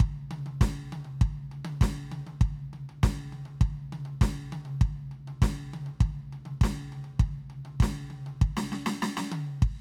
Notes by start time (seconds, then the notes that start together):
0.00 kick, high tom
0.31 high tom
0.46 high tom
0.61 kick, snare, high tom
0.92 high tom
1.04 high tom
1.21 kick, high tom
1.51 high tom
1.65 high tom
1.70 crash
1.81 kick, snare, high tom
2.12 high tom
2.27 high tom
2.41 kick, high tom
2.73 high tom
2.89 high tom
3.03 kick, snare, high tom
3.32 high tom
3.45 high tom
3.61 kick, high tom
3.92 high tom
4.05 high tom
4.21 kick, snare, high tom
4.52 high tom
4.65 high tom
4.81 kick, high tom
5.11 high tom
5.27 high tom
5.42 kick, snare, high tom
5.73 high tom
5.86 high tom
6.00 kick, high tom
6.33 high tom
6.45 high tom
6.61 kick, snare, high tom
6.92 high tom
7.04 high tom
7.20 kick, high tom
7.50 high tom
7.65 high tom
7.80 kick, snare, high tom
8.10 high tom
8.26 high tom
8.41 kick, high tom
8.57 snare
8.72 snare
8.86 snare
9.02 snare
9.17 snare
9.32 high tom
9.62 kick, crash